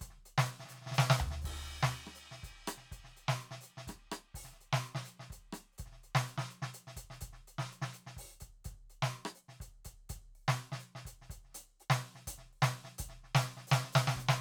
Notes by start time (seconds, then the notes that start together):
0.01 closed hi-hat, kick
0.10 snare
0.25 closed hi-hat
0.38 snare
0.44 hi-hat pedal
0.49 closed hi-hat
0.60 snare
0.66 snare, hi-hat pedal
0.70 snare
0.74 snare
0.82 snare
0.86 snare
0.91 snare, hi-hat pedal
0.98 snare
1.10 snare
1.18 kick, hi-hat pedal, floor tom
1.31 snare
1.42 kick, hi-hat pedal, crash
1.50 kick
1.55 snare
1.62 snare
1.71 closed hi-hat
1.83 snare
1.95 closed hi-hat
2.07 cross-stick
2.15 closed hi-hat, hi-hat pedal
2.31 snare
2.43 closed hi-hat, kick
2.67 closed hi-hat, cross-stick
2.77 snare
2.92 closed hi-hat, kick
3.04 snare
3.17 closed hi-hat
3.28 snare
3.40 closed hi-hat
3.51 snare
3.61 closed hi-hat, hi-hat pedal
3.77 snare
3.87 closed hi-hat, kick, cross-stick
4.12 closed hi-hat, cross-stick
4.34 open hi-hat, kick
4.44 snare
4.53 snare
4.61 closed hi-hat
4.73 snare
4.85 closed hi-hat
4.95 snare
5.05 closed hi-hat, hi-hat pedal
5.20 snare
5.30 closed hi-hat, kick
5.53 open hi-hat, cross-stick
5.73 hi-hat pedal
5.78 closed hi-hat, kick
5.85 snare
5.92 snare
6.03 closed hi-hat
6.15 snare
6.27 closed hi-hat
6.38 snare
6.44 hi-hat pedal
6.50 closed hi-hat
6.62 snare
6.74 closed hi-hat
6.87 snare
6.96 open hi-hat, kick
7.10 snare, hi-hat pedal
7.21 closed hi-hat, kick
7.33 snare
7.47 closed hi-hat
7.58 snare
7.72 closed hi-hat
7.82 snare
7.93 hi-hat pedal
8.06 snare
8.17 open hi-hat, kick
8.40 closed hi-hat, kick
8.64 closed hi-hat, kick
8.71 kick
8.74 kick
8.90 closed hi-hat
9.02 snare
9.14 closed hi-hat
9.25 cross-stick
9.35 closed hi-hat, hi-hat pedal
9.48 snare
9.60 closed hi-hat, kick
9.85 closed hi-hat, kick
10.09 closed hi-hat, kick, snare
10.16 kick
10.35 open hi-hat
10.48 snare, hi-hat pedal
10.60 closed hi-hat
10.72 snare
10.79 closed hi-hat, hi-hat pedal
10.95 snare
11.05 closed hi-hat, kick
11.21 snare
11.30 closed hi-hat, kick
11.44 snare
11.50 snare
11.53 open hi-hat, snare
11.55 snare
11.80 open hi-hat, hi-hat pedal
11.90 snare
12.03 closed hi-hat
12.15 snare
12.27 closed hi-hat, kick
12.38 snare
12.53 open hi-hat
12.62 snare
12.69 hi-hat pedal
12.75 closed hi-hat
12.84 snare
12.98 closed hi-hat, kick
13.06 kick
13.09 kick, snare
13.24 snare
13.35 snare
13.41 hi-hat pedal
13.47 snare
13.57 snare
13.67 hi-hat pedal
13.71 snare
13.84 snare
13.93 snare, hi-hat pedal
14.07 snare
14.16 kick, hi-hat pedal, high tom
14.29 snare